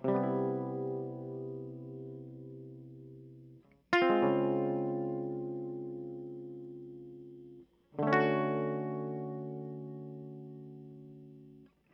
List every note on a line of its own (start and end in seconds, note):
0.06 3.61 C3
0.06 3.79 G3
0.15 3.66 B3
3.93 7.66 F4
4.02 7.67 C4
4.10 7.66 G#3
4.24 7.65 C#3
8.00 11.67 D3
8.00 11.70 A3
8.07 11.70 C#4
8.13 11.68 F#4